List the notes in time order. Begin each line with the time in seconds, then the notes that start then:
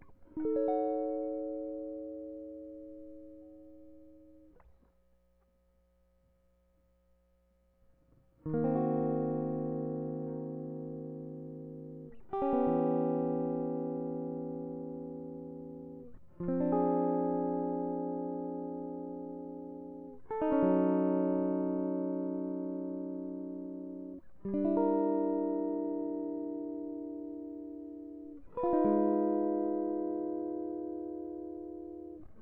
0.36 D#4
0.46 A4
0.57 C#5
0.70 F#5
8.47 D#3
8.55 A#3
8.67 C4
8.77 F#4
12.35 G4
12.44 C#4
12.56 B3
12.67 E3
16.41 F3
16.49 C4
16.62 D4
16.74 G#4
20.32 A4
20.44 D#4
20.54 C#4
20.61 F#3
24.43 G3
24.55 D4
24.66 E4
24.78 A#4
28.59 B4
28.65 F4
28.74 D#4
28.84 G#3